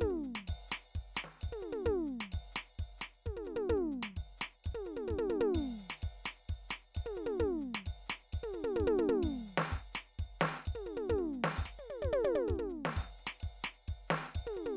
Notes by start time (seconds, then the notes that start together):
0.01 kick, mid tom
0.10 mid tom
0.24 hi-hat pedal
0.36 snare
0.48 kick, ride bell
0.68 snare, hi-hat pedal
0.96 kick, ride bell
1.15 snare, hi-hat pedal
1.25 snare
1.42 kick, ride
1.49 kick, mid tom
1.61 hi-hat pedal, mid tom
1.72 mid tom
1.86 kick, mid tom
2.07 hi-hat pedal
2.21 snare
2.32 kick, ride bell
2.52 hi-hat pedal
2.56 snare
2.79 kick, ride bell
2.98 snare, hi-hat pedal
3.26 kick, mid tom
3.37 mid tom
3.45 hi-hat pedal
3.56 mid tom
3.70 kick, mid tom
3.77 mid tom
3.92 hi-hat pedal
4.03 snare
4.17 kick, ride bell
4.38 snare, hi-hat pedal
4.65 kick, ride
4.72 kick, mid tom
4.85 hi-hat pedal, mid tom
4.97 mid tom
5.08 kick, mid tom
5.19 mid tom
5.30 hi-hat pedal, mid tom
5.41 mid tom
5.55 kick, ride bell
5.79 hi-hat pedal
5.90 snare
6.02 kick, ride bell
6.24 snare, hi-hat pedal
6.49 kick, ride bell
6.69 snare, hi-hat pedal
6.95 kick, ride
7.06 mid tom
7.15 hi-hat pedal, mid tom
7.26 mid tom
7.40 kick, mid tom
7.61 hi-hat pedal
7.75 snare
7.86 kick, ride bell
8.06 snare, hi-hat pedal
8.33 kick, ride
8.43 mid tom
8.53 hi-hat pedal, mid tom
8.64 mid tom
8.76 mid tom
8.80 kick
8.87 mid tom
8.99 hi-hat pedal, mid tom
9.09 mid tom
9.23 kick, ride bell
9.47 hi-hat pedal
9.58 snare
9.72 kick, ride bell
9.78 kick
9.92 snare, hi-hat pedal
10.19 kick, ride bell
10.25 kick
10.40 snare, hi-hat pedal
10.66 kick, ride
10.73 kick, mid tom
10.86 hi-hat pedal, mid tom
10.97 mid tom
11.10 kick, mid tom
11.18 mid tom
11.33 hi-hat pedal
11.44 snare
11.57 kick, ride
11.65 kick, snare
11.78 hi-hat pedal, high tom
11.90 high tom
12.02 kick, high tom
12.13 high tom
12.24 hi-hat pedal, high tom
12.35 high tom
12.48 kick, mid tom
12.56 kick, mid tom
12.70 hi-hat pedal
12.86 snare
12.97 kick, ride bell
13.06 kick
13.18 hi-hat pedal
13.27 snare
13.41 kick, ride bell
13.62 snare, hi-hat pedal
13.88 kick, ride bell
14.08 snare, hi-hat pedal
14.35 kick, ride
14.42 kick
14.47 mid tom
14.54 hi-hat pedal, mid tom
14.66 mid tom